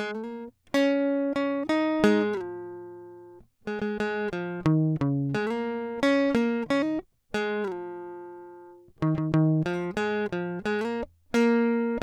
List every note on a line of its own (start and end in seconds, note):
0.00 0.15 G#3
0.16 0.23 A3
0.25 0.53 A#3
0.75 1.35 C#4
1.37 1.68 C#4
1.70 2.27 D#4
2.04 2.34 G#3
2.34 3.42 F3
3.68 3.83 G#3
3.83 4.01 G#3
4.01 4.32 G#3
4.34 4.66 F3
4.66 4.99 D#3
5.02 5.40 C#3
5.35 5.47 G#3
5.47 6.04 A#3
6.03 6.39 C#4
6.35 6.67 A#3
6.71 6.82 C#4
6.83 7.04 D#4
7.35 7.65 G#3
7.66 8.93 F3
9.03 9.19 D#3
9.19 9.33 D#3
9.34 9.67 D#3
9.66 9.95 F3
9.97 10.30 G#3
10.33 10.63 F3
10.66 10.82 G#3
10.82 11.06 A#3
11.35 12.00 A#3